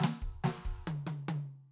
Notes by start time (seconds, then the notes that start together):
0.00 snare
0.03 snare
0.22 kick
0.44 snare
0.46 snare
0.65 kick
0.87 high tom
1.07 high tom
1.28 high tom